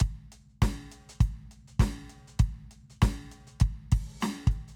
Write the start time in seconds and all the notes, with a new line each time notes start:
0.01 kick, closed hi-hat
0.32 closed hi-hat
0.49 closed hi-hat
0.62 kick, snare
0.92 closed hi-hat
1.09 closed hi-hat
1.21 kick, closed hi-hat
1.51 closed hi-hat
1.68 closed hi-hat
1.79 kick, snare
2.10 closed hi-hat
2.27 closed hi-hat
2.39 kick, closed hi-hat
2.71 closed hi-hat
2.90 closed hi-hat
3.02 kick, snare
3.31 closed hi-hat
3.47 closed hi-hat
3.60 kick, closed hi-hat
3.92 kick, open hi-hat
4.20 closed hi-hat, snare, hi-hat pedal
4.47 kick
4.51 closed hi-hat
4.68 closed hi-hat